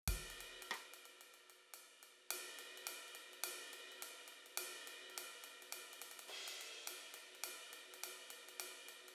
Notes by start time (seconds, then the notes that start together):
0.07 kick, ride
0.15 kick
0.30 ride
0.40 ride
0.62 ride
0.71 cross-stick, ride
0.93 ride
1.05 ride
1.21 ride
1.34 ride
1.50 ride
1.74 ride
2.03 ride
2.30 ride
2.59 ride
2.77 ride
2.87 ride
3.08 ride
3.15 ride
3.33 ride
3.43 ride
3.73 ride
3.92 ride
4.02 ride
4.28 ride
4.46 ride
4.57 ride
4.87 ride
5.10 ride
5.18 ride
5.44 ride
5.62 ride
5.72 ride
5.93 ride
6.01 ride
6.11 ride
6.19 ride
6.28 ride
6.48 ride
6.61 ride
6.87 ride
7.14 ride
7.35 ride
7.43 ride
7.73 ride
7.94 ride
8.03 ride
8.30 ride
8.48 ride
8.60 ride
8.88 ride
9.08 ride